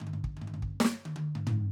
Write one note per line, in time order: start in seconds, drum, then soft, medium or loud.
0.00 floor tom medium
0.00 high tom medium
0.07 high tom medium
0.13 floor tom medium
0.24 kick medium
0.37 high tom medium
0.42 floor tom medium
0.47 high tom medium
0.54 floor tom medium
0.62 kick medium
0.80 snare loud
0.85 snare loud
1.05 high tom loud
1.16 high tom loud
1.35 floor tom medium
1.47 floor tom loud